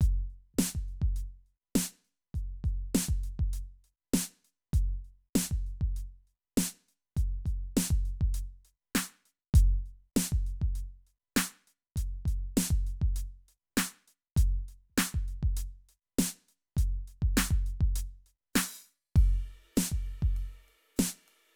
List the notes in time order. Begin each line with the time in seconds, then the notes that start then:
0.00 kick, closed hi-hat
0.30 closed hi-hat
0.54 kick
0.58 closed hi-hat, snare
0.75 kick
0.88 closed hi-hat
1.02 kick
1.16 closed hi-hat
1.46 closed hi-hat
1.75 closed hi-hat, snare
2.04 closed hi-hat
2.34 kick, closed hi-hat
2.64 kick, closed hi-hat
2.94 closed hi-hat, snare
3.08 kick
3.23 closed hi-hat
3.39 kick
3.53 closed hi-hat
3.84 closed hi-hat
4.13 closed hi-hat, snare
4.44 closed hi-hat
4.73 closed hi-hat, kick
5.04 closed hi-hat
5.35 closed hi-hat, kick, snare
5.51 kick
5.66 closed hi-hat
5.81 kick
5.96 closed hi-hat
6.27 closed hi-hat
6.57 closed hi-hat, snare
6.88 closed hi-hat
7.17 closed hi-hat, kick
7.46 kick, closed hi-hat
7.77 closed hi-hat, snare
7.90 kick
8.05 closed hi-hat
8.21 kick
8.34 closed hi-hat
8.65 closed hi-hat
8.95 closed hi-hat, snare
9.25 closed hi-hat
9.54 closed hi-hat, kick
9.86 closed hi-hat
10.16 closed hi-hat, snare
10.32 kick
10.46 closed hi-hat
10.61 kick
10.75 closed hi-hat
11.06 closed hi-hat
11.36 closed hi-hat, snare
11.67 closed hi-hat
11.96 closed hi-hat, kick
12.25 kick, closed hi-hat
12.57 closed hi-hat, snare
12.70 kick
12.87 closed hi-hat
13.01 kick
13.16 closed hi-hat
13.48 closed hi-hat
13.77 closed hi-hat, snare
14.08 closed hi-hat
14.36 closed hi-hat, kick
14.68 closed hi-hat
14.90 kick
14.97 closed hi-hat, snare
15.14 kick
15.28 closed hi-hat
15.43 kick
15.57 closed hi-hat
15.89 closed hi-hat
16.18 closed hi-hat, snare
16.48 closed hi-hat
16.77 closed hi-hat, kick
17.07 closed hi-hat
17.22 kick
17.37 closed hi-hat, snare
17.50 kick
17.66 closed hi-hat
17.80 kick
17.96 closed hi-hat
18.26 closed hi-hat
18.53 open hi-hat, snare, hi-hat pedal
19.16 kick, ride
19.47 ride
19.75 snare, hi-hat pedal, ride
19.91 kick
20.06 ride
20.22 kick, crash
20.36 ride
20.68 ride
20.96 snare, hi-hat pedal, ride
21.28 ride